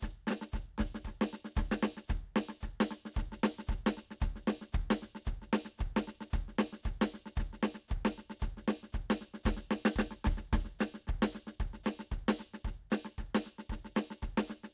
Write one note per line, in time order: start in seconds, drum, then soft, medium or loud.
0.01 kick medium
0.01 snare soft
0.01 hi-hat pedal medium
0.28 snare medium
0.31 snare medium
0.42 snare soft
0.52 kick medium
0.52 snare soft
0.52 hi-hat pedal medium
0.78 kick medium
0.78 snare medium
0.95 snare soft
1.05 kick soft
1.05 snare soft
1.05 hi-hat pedal medium
1.22 snare loud
1.33 snare soft
1.45 snare soft
1.56 kick medium
1.56 snare medium
1.56 hi-hat pedal medium
1.72 snare medium
1.83 snare loud
1.97 snare soft
2.08 kick medium
2.08 snare soft
2.08 hi-hat pedal medium
2.36 snare loud
2.49 snare soft
2.61 kick soft
2.61 snare soft
2.61 hi-hat pedal medium
2.81 snare loud
2.91 snare soft
3.06 snare soft
3.14 kick medium
3.14 snare soft
3.14 hi-hat pedal medium
3.33 snare soft
3.44 snare loud
3.59 snare soft
3.68 kick medium
3.68 snare soft
3.68 hi-hat pedal medium
3.87 snare loud
3.97 snare soft
4.11 snare soft
4.21 kick medium
4.21 snare soft
4.21 hi-hat pedal medium
4.36 snare soft
4.48 snare loud
4.62 snare soft
4.73 kick medium
4.73 snare soft
4.73 hi-hat pedal medium
4.91 snare loud
5.03 snare soft
5.15 snare soft
5.25 kick medium
5.25 snare soft
5.25 hi-hat pedal medium
5.42 snare soft
5.53 snare loud
5.65 snare soft
5.78 kick medium
5.78 snare soft
5.78 hi-hat pedal medium
5.97 snare loud
6.08 snare soft
6.21 snare soft
6.31 kick medium
6.31 snare soft
6.31 hi-hat pedal medium
6.49 snare soft
6.59 snare loud
6.73 snare soft
6.84 kick medium
6.84 snare soft
6.84 hi-hat pedal medium
7.02 snare loud
7.14 snare soft
7.26 snare soft
7.36 kick medium
7.36 snare soft
7.36 hi-hat pedal medium
7.53 snare soft
7.63 snare loud
7.75 snare soft
7.89 kick medium
7.89 snare soft
7.89 hi-hat pedal medium
8.05 snare loud
8.18 snare soft
8.30 snare soft
8.40 kick medium
8.40 snare soft
8.40 hi-hat pedal medium
8.58 snare soft
8.68 snare loud
8.83 snare soft
8.93 kick medium
8.93 snare soft
8.93 hi-hat pedal medium
9.11 snare loud
9.21 snare soft
9.34 snare soft
9.44 kick medium
9.44 snare medium
9.44 hi-hat pedal medium
9.57 snare soft
9.71 snare medium
9.86 snare loud
9.96 kick medium
9.96 snare medium
9.96 hi-hat pedal medium
10.11 snare soft
10.25 kick medium
10.25 snare medium
10.38 snare soft
10.53 kick medium
10.53 snare medium
10.65 snare soft
10.79 snare medium
10.79 hi-hat pedal medium
10.94 snare soft
11.08 kick medium
11.08 snare soft
11.23 snare loud
11.33 snare soft
11.33 hi-hat pedal medium
11.47 snare soft
11.60 kick medium
11.60 snare soft
11.74 snare soft
11.84 snare medium
11.84 hi-hat pedal medium
12.00 snare soft
12.12 kick medium
12.12 snare soft
12.29 snare loud
12.39 snare soft
12.39 hi-hat pedal medium
12.54 snare soft
12.65 kick medium
12.65 snare soft
12.91 snare loud
12.91 hi-hat pedal medium
13.05 snare soft
13.19 kick soft
13.19 snare soft
13.35 snare loud
13.44 snare soft
13.44 hi-hat pedal medium
13.59 snare soft
13.70 kick medium
13.70 snare soft
13.85 snare soft
13.96 snare loud
13.96 hi-hat pedal medium
14.11 snare soft
14.23 kick medium
14.23 snare soft
14.38 snare loud
14.48 snare soft
14.48 hi-hat pedal medium
14.64 snare soft